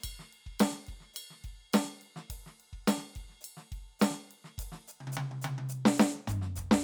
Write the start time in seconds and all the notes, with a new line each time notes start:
0.01 kick, hi-hat pedal, ride bell
0.20 snare
0.33 ride
0.47 kick
0.60 snare, hi-hat pedal, ride bell
0.72 snare
0.87 kick, ride
1.01 snare
1.14 hi-hat pedal, ride bell
1.31 snare
1.41 kick, snare, ride
1.50 kick
1.73 snare, hi-hat pedal, ride bell
1.84 snare
2.02 ride
2.16 snare
2.30 kick, hi-hat pedal, ride
2.36 kick
2.47 snare
2.60 ride
2.73 kick
2.88 snare, hi-hat pedal, ride bell
2.98 snare
3.16 kick, ride
3.22 kick
3.30 snare
3.41 hi-hat pedal, ride bell
3.57 snare
3.66 snare
3.72 kick, ride
3.78 kick
3.81 kick
4.00 snare, hi-hat pedal, ride bell
4.11 snare
4.31 ride
4.45 snare
4.58 kick, hi-hat pedal, ride
4.65 kick
4.68 kick
4.72 snare
4.76 kick
4.88 hi-hat pedal
5.01 high tom
5.08 high tom
5.13 hi-hat pedal
5.17 high tom
5.32 high tom
5.42 hi-hat pedal, high tom
5.59 high tom
5.69 hi-hat pedal
5.86 snare
5.99 snare, hi-hat pedal
6.15 snare
6.28 kick, hi-hat pedal, mid tom
6.34 kick
6.42 snare
6.56 kick, hi-hat pedal, floor tom
6.63 kick
6.72 snare